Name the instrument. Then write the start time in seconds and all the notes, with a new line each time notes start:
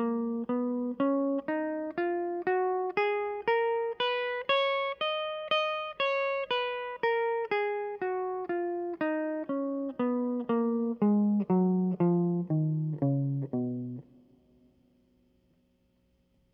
electric guitar
0.00 A#3
0.50 B3
1.01 C#4
1.49 D#4
1.98 F4
2.48 F#4
2.98 G#4
3.48 A#4
4.01 B4
4.50 C#5
5.02 D#5
5.52 D#5
6.01 C#5
6.51 B4
7.04 A#4
7.52 G#4
8.02 F#4
8.50 F4
9.02 D#4
9.50 C#4
10.00 B3
10.50 A#3
11.03 G#3
11.51 F#3
12.01 F3
12.52 D#3
13.04 C#3
13.55 B2